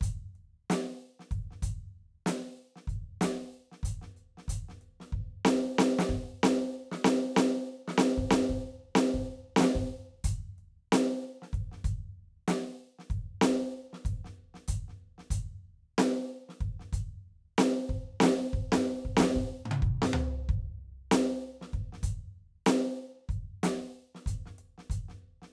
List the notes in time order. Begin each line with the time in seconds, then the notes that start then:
0.01 closed hi-hat, kick
0.35 closed hi-hat
0.70 closed hi-hat, snare
1.01 closed hi-hat
1.20 snare
1.31 kick, closed hi-hat
1.51 snare
1.63 closed hi-hat, kick
2.26 closed hi-hat, snare
2.57 closed hi-hat
2.76 snare
2.88 closed hi-hat, kick
3.21 closed hi-hat, snare
3.53 closed hi-hat
3.72 snare
3.83 closed hi-hat, kick
4.02 snare
4.17 closed hi-hat
4.38 snare
4.48 closed hi-hat, kick
4.69 snare
4.81 closed hi-hat
5.00 snare
5.13 kick
5.45 snare
5.79 snare
5.99 snare
6.09 kick
6.43 snare
6.92 snare
7.05 snare
7.37 snare
7.88 snare
7.98 snare
8.18 kick
8.31 snare
8.50 kick
8.95 snare
9.14 kick
9.57 snare
9.61 snare
9.75 kick
10.24 closed hi-hat, kick
10.58 closed hi-hat
10.92 closed hi-hat, snare
11.22 snare, closed hi-hat
11.42 snare
11.53 kick, closed hi-hat, crash
11.72 snare
11.76 snare
11.84 closed hi-hat, kick
12.48 snare, closed hi-hat
12.99 snare
13.10 kick, closed hi-hat
13.42 closed hi-hat, snare
13.93 snare
14.05 kick, closed hi-hat
14.25 snare
14.36 closed hi-hat
14.54 snare
14.68 closed hi-hat, kick
14.88 snare
15.00 closed hi-hat
15.18 snare
15.31 closed hi-hat, kick
15.98 closed hi-hat, snare
16.49 snare
16.61 kick, closed hi-hat
16.65 crash
16.80 snare
16.93 closed hi-hat, kick
17.58 closed hi-hat, snare
17.89 kick
18.20 snare
18.24 snare
18.53 kick
18.72 snare
19.05 kick
19.17 snare
19.20 snare
19.36 kick
19.66 mid tom
19.71 high tom
19.82 kick
20.02 snare
20.13 floor tom
20.45 kick
20.49 kick
21.12 closed hi-hat, snare
21.61 snare
21.73 kick, closed hi-hat
21.93 snare
22.03 closed hi-hat, kick
22.66 closed hi-hat, snare
23.29 closed hi-hat, kick
23.63 closed hi-hat, snare
23.96 closed hi-hat
24.15 snare
24.26 closed hi-hat, kick, snare
24.46 snare
24.59 closed hi-hat
24.78 snare
24.90 closed hi-hat, kick
25.09 snare
25.23 closed hi-hat
25.42 snare